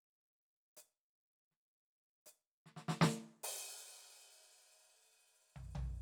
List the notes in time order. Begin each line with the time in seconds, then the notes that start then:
0.77 hi-hat pedal
1.51 snare
2.26 hi-hat pedal
2.66 snare
2.76 snare
2.88 snare
3.01 snare
3.43 open hi-hat
5.56 floor tom
5.75 floor tom